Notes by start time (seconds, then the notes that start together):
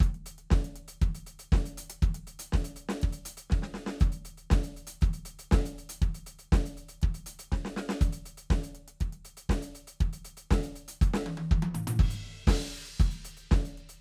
0.01 kick, closed hi-hat
0.15 closed hi-hat
0.27 closed hi-hat
0.39 closed hi-hat
0.51 kick, snare
0.65 closed hi-hat
0.76 closed hi-hat
0.89 closed hi-hat
1.02 kick, closed hi-hat
1.15 closed hi-hat
1.27 closed hi-hat
1.40 closed hi-hat
1.53 kick, snare
1.66 closed hi-hat
1.78 closed hi-hat
1.90 closed hi-hat
2.03 kick, closed hi-hat
2.15 closed hi-hat
2.28 closed hi-hat
2.40 closed hi-hat
2.53 kick, snare
2.65 closed hi-hat
2.77 closed hi-hat
2.89 snare
3.02 kick, closed hi-hat
3.13 closed hi-hat
3.26 closed hi-hat
3.38 closed hi-hat
3.51 kick, snare
3.63 snare
3.75 snare
3.87 snare
4.01 closed hi-hat, kick
4.13 closed hi-hat
4.26 closed hi-hat
4.38 closed hi-hat
4.51 kick, snare
4.64 closed hi-hat
4.77 closed hi-hat
4.88 closed hi-hat
5.02 closed hi-hat, kick
5.14 closed hi-hat
5.26 closed hi-hat
5.39 closed hi-hat
5.52 kick, snare
5.66 closed hi-hat
5.79 closed hi-hat
5.90 closed hi-hat
6.02 kick, closed hi-hat
6.15 closed hi-hat
6.27 closed hi-hat
6.39 closed hi-hat
6.53 kick, snare
6.66 closed hi-hat
6.78 closed hi-hat
6.89 closed hi-hat
7.02 kick, closed hi-hat
7.15 closed hi-hat
7.27 closed hi-hat
7.40 closed hi-hat
7.52 kick, snare
7.66 snare
7.77 snare
7.90 snare
8.02 closed hi-hat, kick
8.13 closed hi-hat
8.26 closed hi-hat
8.38 closed hi-hat
8.51 kick, snare
8.64 closed hi-hat
8.75 closed hi-hat
8.88 closed hi-hat
9.01 kick, closed hi-hat
9.13 closed hi-hat
9.25 closed hi-hat
9.38 closed hi-hat
9.50 kick, snare
9.63 closed hi-hat
9.76 closed hi-hat
9.88 closed hi-hat
10.01 kick, closed hi-hat
10.14 closed hi-hat
10.25 closed hi-hat
10.38 closed hi-hat
10.51 kick, snare
10.64 closed hi-hat
10.76 closed hi-hat
10.89 closed hi-hat
11.02 closed hi-hat, kick
11.14 snare
11.27 high tom
11.38 high tom
11.52 kick, high tom
11.63 high tom
11.75 mid tom
11.88 mid tom
12.00 kick, ride
12.11 closed hi-hat
12.48 kick, snare, crash
12.76 closed hi-hat
12.85 closed hi-hat
13.00 closed hi-hat, kick
13.11 closed hi-hat
13.25 closed hi-hat
13.37 closed hi-hat
13.52 kick, snare
13.66 closed hi-hat
13.78 closed hi-hat
13.90 closed hi-hat